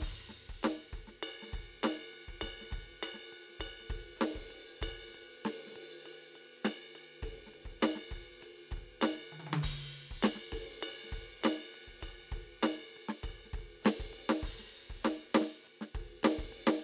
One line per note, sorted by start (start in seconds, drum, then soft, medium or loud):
0.01 kick medium
0.01 hi-hat pedal soft
0.01 crash medium
0.07 kick soft
0.13 kick soft
0.20 cross-stick soft
0.29 snare soft
0.49 kick soft
0.62 snare medium
0.62 hi-hat pedal medium
0.62 ride bell medium
0.93 kick soft
0.93 ride medium
1.07 snare soft
1.22 hi-hat pedal soft
1.22 ride bell loud
1.42 snare soft
1.47 snare soft
1.51 kick soft
1.51 snare soft
1.51 ride soft
1.60 kick soft
1.83 snare medium
1.83 hi-hat pedal medium
1.83 ride bell loud
2.13 ride soft
2.28 kick soft
2.40 kick soft
2.40 snare soft
2.40 hi-hat pedal medium
2.40 ride bell loud
2.61 cross-stick soft
2.61 snare soft
2.70 kick soft
2.70 snare soft
2.70 ride medium
2.78 kick soft
2.82 kick soft
3.01 cross-stick medium
3.01 hi-hat pedal soft
3.01 ride bell loud
3.14 snare soft
3.32 ride medium
3.49 snare soft
3.59 kick soft
3.59 snare soft
3.59 hi-hat pedal medium
3.59 ride bell loud
3.80 snare soft
3.83 snare soft
3.90 kick medium
3.90 ride medium
3.97 kick soft
4.16 hi-hat pedal medium
4.21 snare medium
4.21 ride loud
4.35 kick soft
4.35 snare soft
4.50 ride medium
4.81 kick medium
4.81 hi-hat pedal medium
4.81 ride bell loud
4.88 kick soft
4.92 kick soft
5.08 snare soft
5.14 ride medium
5.45 snare medium
5.45 hi-hat pedal medium
5.45 ride loud
5.67 snare soft
5.72 snare soft
5.72 ride medium
6.00 snare soft
6.02 snare soft
6.02 ride bell medium
6.35 ride bell medium
6.64 snare medium
6.64 hi-hat pedal medium
6.64 ride bell loud
6.95 ride bell medium
7.22 kick soft
7.22 hi-hat pedal medium
7.22 ride medium
7.46 snare soft
7.54 ride soft
7.65 kick soft
7.81 snare loud
7.81 hi-hat pedal medium
7.81 ride bell loud
7.95 snare soft
8.11 kick soft
8.11 ride medium
8.17 kick soft
8.41 hi-hat pedal medium
8.41 ride medium
8.71 kick soft
8.71 ride bell medium
8.78 kick soft
9.01 snare loud
9.01 hi-hat pedal medium
9.01 ride bell loud
9.32 high tom soft
9.39 high tom medium
9.46 high tom medium
9.53 high tom loud
9.62 kick medium
9.62 hi-hat pedal medium
9.62 crash loud
10.11 kick soft
10.22 snare loud
10.22 hi-hat pedal medium
10.22 ride bell loud
10.35 snare soft
10.52 kick soft
10.52 ride loud
10.59 kick soft
10.81 hi-hat pedal medium
10.81 ride bell loud
11.03 snare soft
11.08 kick soft
11.08 snare soft
11.08 ride soft
11.19 kick soft
11.41 snare loud
11.41 hi-hat pedal medium
11.41 ride bell loud
11.74 ride bell soft
11.87 kick soft
11.98 snare soft
11.98 hi-hat pedal medium
12.02 kick soft
12.02 ride bell loud
12.13 kick soft
12.29 snare soft
12.31 kick medium
12.31 snare soft
12.31 ride medium
12.38 kick soft
12.61 snare loud
12.61 hi-hat pedal medium
12.61 ride bell loud
12.96 ride medium
13.09 snare medium
13.22 kick soft
13.22 hi-hat pedal medium
13.22 ride bell medium
13.30 kick soft
13.45 snare soft
13.53 kick soft
13.53 ride medium
13.60 kick soft
13.82 snare loud
13.82 hi-hat pedal medium
13.82 ride loud
14.00 kick soft
14.13 ride bell medium
14.29 snare loud
14.41 kick medium
14.41 hi-hat pedal medium
14.41 crash medium
14.49 kick soft
14.53 kick soft
14.59 snare soft
14.65 snare soft
14.71 snare soft
14.90 kick soft
15.02 snare loud
15.02 hi-hat pedal medium
15.02 ride bell medium
15.34 snare loud
15.34 ride bell medium
15.41 snare soft
15.64 hi-hat pedal medium
15.64 ride soft
15.81 snare soft
15.95 kick medium
15.95 ride medium
16.02 kick soft
16.23 snare loud
16.23 hi-hat pedal medium
16.23 ride loud
16.38 kick soft
16.44 kick soft
16.52 ride medium
16.67 snare loud